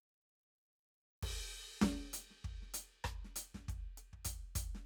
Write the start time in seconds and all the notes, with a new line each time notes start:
1.23 kick, crash
1.51 closed hi-hat
1.82 kick, snare
2.13 closed hi-hat
2.31 snare
2.44 closed hi-hat, kick
2.62 snare
2.74 closed hi-hat
3.04 kick, cross-stick
3.25 snare
3.36 closed hi-hat
3.54 kick, snare
3.68 kick, closed hi-hat
3.97 closed hi-hat
4.13 kick
4.25 closed hi-hat, kick
4.55 closed hi-hat, kick
4.75 snare